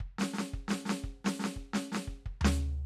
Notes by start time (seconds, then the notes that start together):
0.00 kick
0.18 snare
0.21 snare
0.33 snare
0.38 snare
0.53 kick
0.68 snare
0.71 snare
0.85 snare
0.89 snare
1.04 kick
1.24 snare
1.26 snare
1.39 snare
1.44 snare
1.56 kick
1.73 snare
1.92 snare
1.95 snare
2.07 kick
2.26 kick
2.41 snare, floor tom